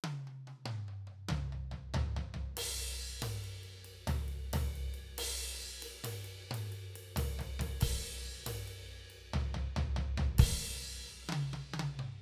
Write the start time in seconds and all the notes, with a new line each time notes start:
0.04 high tom
0.27 high tom
0.47 high tom
0.65 mid tom
0.88 mid tom
1.07 mid tom
1.29 floor tom, high tom
1.52 floor tom
1.71 floor tom
1.94 floor tom, mid tom
2.16 floor tom
2.34 floor tom
2.57 ride, crash
2.79 ride
3.22 mid tom, ride
3.44 ride
3.63 ride
3.85 ride
4.07 floor tom, ride
4.28 ride
4.53 floor tom, ride
4.76 ride
4.94 ride
5.18 ride, crash
5.43 ride
5.62 ride
5.82 ride
6.04 mid tom, ride
6.24 ride
6.51 mid tom, ride
6.72 ride
6.96 ride
7.16 floor tom, ride
7.39 floor tom, ride
7.59 floor tom, ride
7.80 kick, ride, crash
8.24 ride
8.46 mid tom, ride
8.68 ride
8.89 ride
9.10 ride
9.33 floor tom
9.54 floor tom
9.76 floor tom
9.96 floor tom
10.17 floor tom
10.38 kick, ride, crash
11.29 high tom
11.32 high tom
11.53 high tom
11.74 high tom
11.79 high tom
11.99 mid tom